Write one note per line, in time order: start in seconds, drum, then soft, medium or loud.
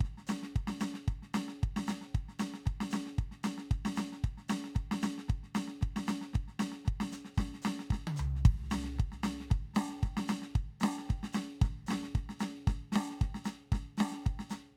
0.01 kick soft
0.01 snare soft
0.18 snare soft
0.27 snare medium
0.27 hi-hat pedal medium
0.43 snare soft
0.56 kick soft
0.56 snare soft
0.68 snare medium
0.81 snare medium
0.81 hi-hat pedal medium
0.95 snare soft
1.08 kick soft
1.08 snare soft
1.23 snare soft
1.34 snare loud
1.34 hi-hat pedal medium
1.49 snare soft
1.63 kick medium
1.63 snare soft
1.77 snare medium
1.88 snare medium
1.88 hi-hat pedal medium
2.02 snare soft
2.15 kick soft
2.15 snare soft
2.29 snare soft
2.39 snare medium
2.39 hi-hat pedal medium
2.54 snare soft
2.66 kick soft
2.66 snare soft
2.81 snare medium
2.91 snare medium
2.91 hi-hat pedal medium
3.06 snare soft
3.19 kick soft
3.19 snare soft
3.32 snare soft
3.44 snare medium
3.44 hi-hat pedal medium
3.58 snare soft
3.71 kick medium
3.71 snare soft
3.86 snare medium
3.96 snare medium
3.96 hi-hat pedal medium
4.13 snare soft
4.24 kick soft
4.24 snare soft
4.38 snare soft
4.49 snare loud
4.49 hi-hat pedal medium
4.64 snare soft
4.75 kick soft
4.75 snare soft
4.92 snare medium
5.02 snare medium
5.02 hi-hat pedal medium
5.18 snare soft
5.29 kick medium
5.29 snare soft
5.44 snare soft
5.55 snare medium
5.55 hi-hat pedal medium
5.68 snare soft
5.82 kick soft
5.82 snare soft
5.97 snare medium
6.08 snare medium
6.08 hi-hat pedal medium
6.22 snare soft
6.34 kick soft
6.34 snare soft
6.48 snare soft
6.60 snare medium
6.60 hi-hat pedal medium
6.72 snare soft
6.85 kick medium
6.85 snare soft
7.01 snare medium
7.12 snare soft
7.12 hi-hat pedal medium
7.25 snare soft
7.35 kick soft
7.35 snare medium
7.35 hi-hat pedal soft
7.54 snare soft
7.62 snare loud
7.62 hi-hat pedal medium
7.80 snare soft
7.91 kick soft
7.91 snare medium
8.07 high tom loud
8.17 floor tom loud
8.17 hi-hat pedal medium
8.36 snare soft
8.46 kick loud
8.46 ride medium
8.64 snare soft
8.71 snare loud
8.71 hi-hat pedal medium
8.84 snare soft
8.99 kick medium
8.99 snare soft
9.12 snare soft
9.24 snare loud
9.24 hi-hat pedal medium
9.41 snare soft
9.51 kick medium
9.51 snare soft
9.74 snare soft
9.74 hi-hat pedal medium
9.77 snare loud
9.89 snare soft
10.03 kick soft
10.03 snare soft
10.17 snare medium
10.28 snare medium
10.28 hi-hat pedal medium
10.42 snare soft
10.56 kick medium
10.56 snare soft
10.81 snare medium
10.81 hi-hat pedal medium
10.84 snare loud
10.99 snare soft
11.10 kick soft
11.10 snare soft
11.23 snare medium
11.33 snare medium
11.33 hi-hat pedal medium
11.62 kick medium
11.62 snare medium
11.87 snare medium
11.87 hi-hat pedal medium
11.91 snare medium
12.04 snare soft
12.15 kick soft
12.15 snare soft
12.30 snare soft
12.40 snare medium
12.40 hi-hat pedal medium
12.68 kick medium
12.68 snare medium
12.93 snare medium
12.93 hi-hat pedal medium
12.96 snare loud
13.11 snare soft
13.22 kick medium
13.22 snare soft
13.35 snare medium
13.45 snare medium
13.45 hi-hat pedal medium
13.72 kick medium
13.72 snare medium
13.98 snare medium
13.98 hi-hat pedal medium
14.01 snare loud
14.12 snare soft
14.26 kick medium
14.26 snare soft
14.40 snare medium
14.50 snare medium
14.50 hi-hat pedal medium